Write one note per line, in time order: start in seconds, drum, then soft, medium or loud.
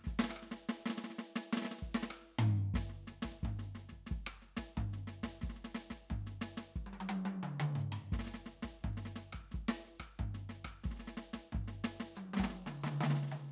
0.01 snare soft
0.04 kick soft
0.04 snare soft
0.20 snare loud
0.24 snare medium
0.30 cross-stick medium
0.30 snare soft
0.37 cross-stick medium
0.40 cross-stick soft
0.40 snare soft
0.47 snare soft
0.52 snare medium
0.62 snare soft
0.69 snare medium
0.86 snare medium
0.90 snare medium
0.95 snare soft
0.98 snare medium
1.04 snare medium
1.11 snare soft
1.19 snare medium
1.36 snare medium
1.53 snare medium
1.57 snare medium
1.62 snare medium
1.65 snare medium
1.72 snare medium
1.79 snare soft
1.83 kick soft
1.95 snare medium
2.03 snare medium
2.11 cross-stick medium
2.18 cross-stick soft
2.22 snare soft
2.39 floor tom loud
2.75 kick medium
2.75 snare medium
2.90 snare soft
3.07 snare soft
3.07 hi-hat pedal soft
3.23 kick soft
3.23 snare medium
3.32 snare soft
3.44 kick soft
3.44 floor tom medium
3.59 snare soft
3.75 snare soft
3.75 hi-hat pedal soft
3.89 kick soft
3.89 snare soft
4.07 snare soft
4.12 kick soft
4.27 cross-stick medium
4.42 snare soft
4.42 hi-hat pedal soft
4.57 kick soft
4.57 snare medium
4.78 kick soft
4.78 floor tom medium
4.94 snare soft
5.08 snare soft
5.08 hi-hat pedal soft
5.24 kick soft
5.24 snare medium
5.42 kick soft
5.42 snare soft
5.50 snare soft
5.56 snare soft
5.65 snare soft
5.75 snare medium
5.80 hi-hat pedal medium
5.91 kick soft
5.91 snare soft
6.11 kick soft
6.11 floor tom medium
6.27 snare soft
6.42 snare medium
6.42 hi-hat pedal medium
6.58 snare medium
6.76 kick soft
6.76 high tom soft
6.87 high tom medium
6.94 high tom medium
7.01 high tom medium
7.10 high tom loud
7.26 high tom medium
7.43 hi-hat pedal soft
7.43 mid tom medium
7.60 mid tom loud
7.76 floor tom medium
7.76 hi-hat pedal medium
7.93 floor tom loud
8.13 kick medium
8.13 snare soft
8.20 snare medium
8.24 snare soft
8.27 snare soft
8.46 snare soft
8.46 hi-hat pedal medium
8.63 kick soft
8.63 snare medium
8.85 kick soft
8.85 floor tom medium
8.98 snare soft
9.06 snare soft
9.16 snare soft
9.16 hi-hat pedal medium
9.33 kick soft
9.33 cross-stick medium
9.52 kick soft
9.52 snare soft
9.69 snare medium
9.85 snare soft
9.85 hi-hat pedal medium
10.00 kick soft
10.00 cross-stick medium
10.20 kick soft
10.20 floor tom medium
10.35 snare soft
10.50 snare soft
10.55 hi-hat pedal medium
10.65 kick soft
10.65 cross-stick medium
10.84 kick soft
10.84 snare soft
10.92 snare soft
10.97 snare soft
11.00 snare soft
11.08 snare soft
11.18 snare medium
11.23 hi-hat pedal medium
11.34 kick soft
11.34 snare medium
11.53 kick soft
11.53 floor tom medium
11.68 snare soft
11.85 snare medium
11.85 hi-hat pedal medium
12.00 snare medium
12.16 hi-hat pedal loud
12.16 high tom medium
12.34 snare medium
12.34 high tom loud
12.40 kick soft
12.40 high tom medium
12.44 snare medium
12.44 hi-hat pedal medium
12.44 high tom medium
12.50 snare soft
12.50 high tom soft
12.67 snare soft
12.67 hi-hat pedal soft
12.67 mid tom medium
12.84 snare medium
12.84 mid tom loud
13.01 snare medium
13.01 mid tom loud
13.06 mid tom medium
13.11 snare medium
13.11 hi-hat pedal medium
13.11 mid tom soft
13.17 snare soft
13.23 snare soft
13.28 snare soft
13.31 snare soft
13.31 mid tom medium
13.35 snare soft
13.40 snare soft
13.45 snare soft
13.49 snare soft